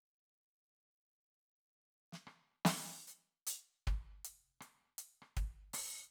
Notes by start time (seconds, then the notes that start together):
2.12 snare
2.27 cross-stick
2.65 open hi-hat, snare
3.07 closed hi-hat, hi-hat pedal
3.47 closed hi-hat
3.87 kick, cross-stick, closed hi-hat
4.25 closed hi-hat
4.61 cross-stick, closed hi-hat
4.98 closed hi-hat
5.22 cross-stick
5.37 kick, closed hi-hat
5.73 open hi-hat, cross-stick